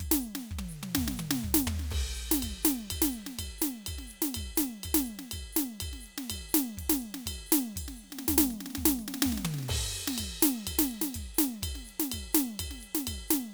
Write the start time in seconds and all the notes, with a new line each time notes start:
0.01 kick, ride bell
0.07 kick
0.12 snare
0.21 hi-hat pedal
0.36 snare
0.52 kick
0.58 kick, high tom
0.69 hi-hat pedal
0.84 open hi-hat, high tom
0.96 kick, snare
1.05 kick, snare
1.17 hi-hat pedal, mid tom
1.32 snare
1.45 kick
1.51 kick, snare
1.65 floor tom, hi-hat pedal
1.80 snare
1.92 kick, crash
1.99 kick
2.15 hi-hat pedal
2.32 snare
2.43 kick, ride bell
2.49 kick
2.63 snare, hi-hat pedal
2.91 kick, ride bell
2.98 kick
3.03 snare
3.12 hi-hat pedal, ride
3.27 snare
3.39 kick, ride bell
3.45 kick
3.59 snare, hi-hat pedal
3.87 kick, ride bell
3.94 kick
3.99 snare
4.08 hi-hat pedal
4.12 ride
4.23 snare
4.35 kick, ride bell
4.43 kick
4.56 snare, hi-hat pedal
4.84 kick, ride bell
4.95 snare
5.05 hi-hat pedal, ride
5.20 snare
5.32 kick, ride bell
5.40 kick
5.53 hi-hat pedal
5.57 snare
5.81 kick, ride bell
5.89 kick
5.94 snare
6.01 hi-hat pedal
6.07 ride
6.19 snare
6.31 kick, ride bell
6.50 hi-hat pedal
6.55 snare
6.78 kick, ride
6.90 snare
6.98 hi-hat pedal
7.03 ride
7.15 snare
7.27 kick, ride bell
7.47 hi-hat pedal
7.53 snare
7.77 kick, ride bell
7.89 snare
7.96 hi-hat pedal
8.04 snare
8.11 snare
8.13 snare
8.19 snare
8.29 kick, snare
8.35 kick, snare
8.50 snare, hi-hat pedal
8.61 snare
8.67 snare
8.71 snare
8.76 kick, snare
8.86 snare
8.99 snare, hi-hat pedal
9.09 snare
9.15 snare
9.21 snare
9.23 kick, snare
9.33 kick, snare
9.38 snare
9.46 hi-hat pedal, mid tom
9.55 snare
9.59 snare
9.64 snare
9.69 kick, crash
9.77 kick
9.83 kick
9.93 hi-hat pedal
10.08 snare
10.19 kick, ride bell
10.41 snare, hi-hat pedal
10.68 kick, ride bell
10.80 snare
10.88 hi-hat pedal
10.92 ride
11.02 snare
11.15 kick, ride bell
11.35 hi-hat pedal
11.39 snare
11.63 kick, ride bell
11.76 snare
11.85 hi-hat pedal
11.90 ride
12.00 snare
12.12 kick, ride bell
12.33 snare, hi-hat pedal
12.60 kick, ride bell
12.67 kick
12.72 snare
12.81 hi-hat pedal, ride
12.96 snare
13.08 kick, ride bell
13.29 snare, hi-hat pedal